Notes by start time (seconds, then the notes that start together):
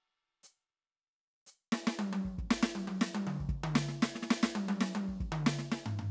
0.43 hi-hat pedal
1.46 hi-hat pedal
1.72 snare
1.87 snare
1.99 high tom
2.13 high tom
2.25 kick
2.38 kick
2.47 kick, snare
2.63 snare
2.75 high tom
2.87 high tom
3.01 snare
3.15 high tom
3.27 mid tom
3.40 kick
3.49 kick
3.64 mid tom
3.75 snare
3.88 snare
4.02 snare
4.15 snare
4.22 snare
4.30 snare
4.43 kick, snare
4.55 high tom
4.68 high tom
4.81 snare
4.95 high tom
5.08 kick
5.20 kick
5.32 mid tom
5.46 snare
5.59 snare
5.72 snare
5.86 floor tom
5.99 floor tom